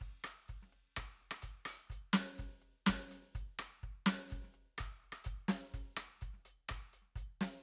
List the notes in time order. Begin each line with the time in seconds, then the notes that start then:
0.01 kick, closed hi-hat
0.24 closed hi-hat, cross-stick
0.48 closed hi-hat, kick
0.62 snare
0.73 closed hi-hat
0.97 closed hi-hat, kick, cross-stick
1.22 closed hi-hat
1.31 cross-stick
1.42 closed hi-hat, kick
1.65 open hi-hat, cross-stick
1.89 closed hi-hat, kick, hi-hat pedal
2.13 closed hi-hat, snare
2.38 closed hi-hat, kick
2.62 closed hi-hat
2.86 closed hi-hat, kick, snare
2.92 snare
3.11 closed hi-hat
3.23 snare
3.35 closed hi-hat, kick
3.59 closed hi-hat, cross-stick
3.83 kick, closed hi-hat
4.06 closed hi-hat, snare
4.30 closed hi-hat, kick
4.44 snare
4.48 snare
4.54 closed hi-hat
4.78 closed hi-hat, kick, cross-stick
5.04 closed hi-hat
5.12 cross-stick
5.24 closed hi-hat, kick
5.48 closed hi-hat, snare
5.74 closed hi-hat, kick
5.97 closed hi-hat, cross-stick
6.21 closed hi-hat, kick
6.34 snare
6.40 snare
6.45 closed hi-hat
6.69 closed hi-hat, kick, cross-stick
6.93 closed hi-hat
7.02 snare
7.16 closed hi-hat, kick
7.41 closed hi-hat, snare